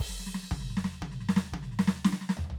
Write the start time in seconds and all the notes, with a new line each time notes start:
0.01 kick, crash
0.09 snare
0.20 snare
0.27 snare
0.35 snare
0.43 snare
0.52 kick, high tom
0.60 snare
0.70 snare
0.77 snare
0.85 snare
0.94 snare
1.02 kick, high tom
1.12 snare
1.21 snare
1.29 snare
1.37 snare
1.46 snare
1.53 kick, high tom
1.63 snare
1.72 snare
1.79 snare
1.88 snare
1.96 snare
2.05 snare
2.13 snare
2.22 snare
2.30 snare
2.37 floor tom
2.45 floor tom
2.49 floor tom
2.51 floor tom